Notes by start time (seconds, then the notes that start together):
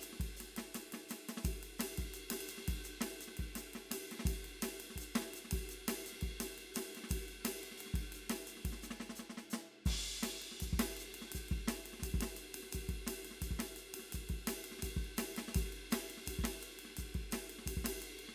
0.01 hi-hat pedal, ride
0.13 snare
0.20 kick, ride
0.37 snare, hi-hat pedal, ride
0.57 snare, ride
0.74 snare, hi-hat pedal, ride
0.92 snare, ride
1.09 snare, hi-hat pedal, ride
1.29 snare, ride
1.37 snare
1.44 kick, hi-hat pedal, ride
1.63 ride
1.79 snare, hi-hat pedal, ride
1.98 kick, ride
2.14 hi-hat pedal, ride
2.30 snare, ride
2.41 ride
2.48 hi-hat pedal, ride
2.58 snare
2.68 kick, ride
2.84 hi-hat pedal, ride
3.01 snare, ride
3.21 hi-hat pedal, ride
3.27 snare
3.37 kick, ride
3.56 snare, hi-hat pedal, ride
3.74 snare, ride
3.91 snare, hi-hat pedal, ride
4.11 snare, ride
4.19 snare
4.25 kick, hi-hat pedal, ride
4.45 ride
4.62 snare, hi-hat pedal, ride
4.80 ride
4.90 snare
4.96 kick, ride
5.00 hi-hat pedal
5.15 snare, ride
5.22 snare
5.34 hi-hat pedal, ride
5.45 snare
5.51 kick, ride
5.69 hi-hat pedal, ride
5.88 snare, ride
6.06 hi-hat pedal, ride
6.13 snare
6.21 kick, ride
6.40 snare, hi-hat pedal, ride
6.58 ride
6.74 snare, hi-hat pedal, ride
6.95 snare, ride
7.04 snare
7.09 kick, hi-hat pedal, ride
7.28 ride
7.45 snare, hi-hat pedal, ride
7.63 ride
7.72 snare
7.78 hi-hat pedal, ride
7.86 snare
7.94 kick, ride
8.12 hi-hat pedal, ride
8.30 snare, ride
8.47 hi-hat pedal, ride
8.57 snare
8.65 kick, ride
8.72 snare
8.83 snare, hi-hat pedal
8.91 snare
9.00 snare
9.09 snare
9.16 snare, hi-hat pedal
9.30 snare
9.37 snare
9.50 snare, hi-hat pedal
9.86 kick, hi-hat pedal, ride
10.23 snare, hi-hat pedal, ride
10.42 ride
10.52 snare
10.60 kick, hi-hat pedal, ride
10.73 kick
10.79 snare, ride
10.97 hi-hat pedal, ride
11.14 ride
11.22 snare
11.32 kick, hi-hat pedal, ride
11.49 kick, ride
11.68 snare, hi-hat pedal, ride
11.86 ride
11.93 snare
12.00 kick, snare, hi-hat pedal
12.04 ride
12.14 kick
12.21 snare, ride
12.36 hi-hat pedal, ride
12.54 ride
12.63 snare
12.72 kick, hi-hat pedal, ride
12.89 kick, ride
13.07 snare, hi-hat pedal, ride
13.25 ride
13.31 snare
13.42 kick, hi-hat pedal, ride
13.51 kick
13.59 snare, ride
13.76 hi-hat pedal, ride
13.94 ride
13.99 snare
14.12 kick, hi-hat pedal, ride
14.29 kick, ride
14.47 snare, hi-hat pedal, ride
14.64 ride
14.72 snare
14.79 snare, ride
14.83 kick, hi-hat pedal
14.97 kick
15.05 ride
15.17 snare, hi-hat pedal, ride
15.37 snare, ride
15.48 snare
15.55 kick, hi-hat pedal, ride
15.72 ride
15.91 snare, hi-hat pedal, ride
16.10 ride
16.17 snare
16.26 kick, hi-hat pedal, ride
16.39 kick
16.44 snare, ride
16.61 hi-hat pedal, ride
16.79 ride
16.85 snare
16.90 snare
16.97 kick, hi-hat pedal, ride
17.15 kick, ride
17.31 snare, hi-hat pedal, ride
17.50 ride
17.59 snare
17.65 kick, snare, hi-hat pedal, ride
17.77 kick
17.84 snare, ride
18.01 hi-hat pedal, ride
18.19 ride
18.29 snare